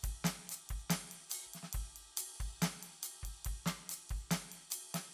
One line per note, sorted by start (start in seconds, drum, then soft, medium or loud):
0.01 kick medium
0.01 hi-hat pedal soft
0.01 ride medium
0.24 snare loud
0.24 ride medium
0.49 hi-hat pedal loud
0.49 ride medium
0.69 kick soft
0.69 ride medium
0.78 hi-hat pedal soft
0.90 snare loud
0.90 ride loud
1.11 ride medium
1.30 hi-hat pedal loud
1.30 ride loud
1.46 kick soft
1.54 snare soft
1.54 ride medium
1.63 snare soft
1.73 kick medium
1.73 ride medium
1.96 ride medium
2.17 hi-hat pedal loud
2.17 ride loud
2.40 kick soft
2.40 ride soft
2.62 snare loud
2.62 ride medium
2.83 ride medium
3.03 hi-hat pedal loud
3.03 ride loud
3.23 kick soft
3.23 ride medium
3.45 kick medium
3.45 hi-hat pedal soft
3.45 ride medium
3.66 snare medium
3.66 ride medium
3.89 hi-hat pedal loud
3.89 ride medium
4.10 kick medium
4.10 ride soft
4.16 hi-hat pedal soft
4.31 snare loud
4.31 ride loud
4.52 ride medium
4.70 hi-hat pedal loud
4.70 ride loud
4.94 snare medium
4.94 ride medium